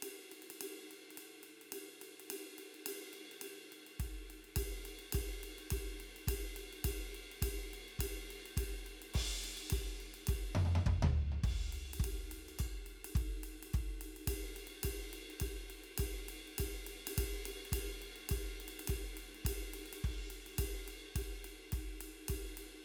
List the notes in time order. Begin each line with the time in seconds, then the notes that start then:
0.03 ride
0.32 ride
0.43 ride
0.51 ride
0.61 ride
0.92 ride
1.11 ride
1.18 ride
1.44 ride
1.62 ride
1.73 ride
2.02 ride
2.20 ride
2.31 ride
2.59 ride
2.75 ride
2.87 ride
3.14 ride
3.32 ride
3.42 ride
3.73 ride
3.87 ride
4.00 kick, ride
4.31 ride
4.45 ride
4.57 kick, ride
4.86 ride
5.00 ride
5.13 kick, ride
5.44 ride
5.59 ride
5.71 kick, ride
6.01 ride
6.17 ride
6.28 kick, ride
6.57 ride
6.73 ride
6.85 kick, ride
7.15 ride
7.32 ride
7.42 kick, ride
7.74 ride
7.89 ride
8.00 kick, ride
8.31 ride
8.46 ride
8.57 kick, ride
8.87 ride
9.02 ride
9.14 kick, ride
9.44 ride
9.58 ride
9.71 kick, ride
10.01 ride
10.15 ride
10.28 kick, ride
10.55 mid tom
10.76 mid tom
10.87 kick, mid tom
11.03 floor tom
11.32 floor tom
11.44 kick, ride
11.73 ride
11.94 ride
12.00 kick
12.05 ride
12.32 ride
12.49 ride bell
12.59 kick, ride bell
12.87 ride
13.05 ride
13.16 kick, ride
13.44 ride
13.63 ride
13.74 kick, ride
14.02 ride
14.17 ride
14.28 kick, ride
14.57 ride
14.68 ride
14.84 kick, ride
15.14 ride
15.31 ride
15.41 kick, ride
15.70 ride
15.84 ride
15.98 kick, ride
16.29 ride
16.48 ride
16.59 kick, ride
16.87 ride
17.08 ride
17.18 kick, ride
17.46 ride
17.66 ride
17.73 kick, ride
18.02 ride
18.16 ride
18.30 kick, ride
18.61 ride
18.69 ride
18.80 ride
18.88 kick, ride
19.18 ride
19.35 ride
19.45 kick, ride
19.74 ride
19.86 ride
19.93 ride
20.05 kick, ride
20.31 ride
20.47 ride
20.59 kick, ride
20.88 ride
21.16 kick, ride
21.45 ride
21.73 kick, ride
22.01 ride
22.29 kick, ride
22.58 ride